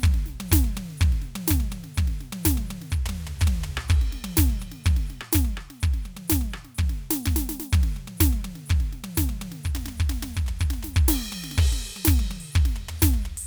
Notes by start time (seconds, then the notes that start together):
0.01 kick, hi-hat pedal
0.06 high tom
0.14 snare
0.24 snare, hi-hat pedal
0.41 high tom
0.49 kick, hi-hat pedal
0.53 snare
0.65 high tom
0.73 hi-hat pedal
0.78 high tom
0.91 snare
0.98 kick, hi-hat pedal
1.03 high tom
1.13 snare
1.22 snare, hi-hat pedal
1.36 high tom
1.47 kick, snare, hi-hat pedal
1.61 high tom
1.71 hi-hat pedal, high tom
1.84 snare
1.95 kick, hi-hat pedal
1.99 high tom
2.08 snare
2.18 snare, hi-hat pedal
2.33 high tom
2.44 kick, snare, hi-hat pedal
2.58 high tom
2.66 hi-hat pedal
2.71 high tom
2.82 snare
2.91 kick, hi-hat pedal
3.06 floor tom, high tom
3.14 hi-hat pedal
3.27 floor tom
3.40 kick, floor tom, hi-hat pedal
3.48 high tom
3.63 floor tom, hi-hat pedal
3.78 cross-stick
3.89 kick, hi-hat pedal, ride
4.02 snare
4.13 snare, hi-hat pedal
4.25 high tom
4.37 kick, snare, hi-hat pedal
4.50 high tom
4.60 hi-hat pedal, high tom
4.72 snare
4.85 kick, hi-hat pedal, high tom
4.97 snare
5.07 snare, hi-hat pedal
5.21 cross-stick
5.33 kick, snare, hi-hat pedal
5.45 high tom
5.58 cross-stick
5.71 snare
5.81 kick, hi-hat pedal, high tom
5.94 snare
6.03 hi-hat pedal, high tom
6.17 high tom
6.28 snare, hi-hat pedal
6.33 kick
6.42 high tom
6.50 cross-stick, hi-hat pedal
6.65 snare
6.75 hi-hat pedal, high tom
6.79 kick
6.90 snare
6.96 hi-hat pedal
7.11 snare
7.24 snare, hi-hat pedal
7.28 kick
7.37 snare
7.45 hi-hat pedal
7.50 snare
7.60 snare
7.71 kick, hi-hat pedal
7.75 high tom
7.84 snare
7.92 hi-hat pedal
7.97 high tom
8.08 high tom
8.18 kick, snare, hi-hat pedal
8.33 high tom
8.39 hi-hat pedal
8.45 high tom
8.56 snare
8.67 hi-hat pedal, high tom
8.71 kick
8.81 snare
8.93 snare
9.04 high tom
9.15 kick, snare, hi-hat pedal
9.30 high tom
9.37 hi-hat pedal
9.42 high tom
9.52 snare
9.64 kick, hi-hat pedal
9.76 snare, floor tom
9.86 snare, floor tom
9.98 kick, hi-hat pedal
10.10 snare, floor tom
10.23 snare, floor tom
10.35 kick, hi-hat pedal
10.47 floor tom, high tom
10.60 kick, hi-hat pedal
10.71 snare, floor tom
10.83 snare, floor tom
10.95 kick, hi-hat pedal
11.09 snare, crash
11.33 high tom
11.44 snare
11.52 snare, hi-hat pedal
11.59 kick, crash
11.73 snare
11.97 high tom
12.05 kick, snare, hi-hat pedal
12.20 high tom
12.31 high tom
12.41 open hi-hat
12.52 kick, hi-hat pedal, high tom
12.66 snare
12.76 floor tom
12.89 floor tom
13.00 kick, snare, hi-hat pedal
13.14 floor tom
13.22 hi-hat pedal
13.26 floor tom
13.38 open hi-hat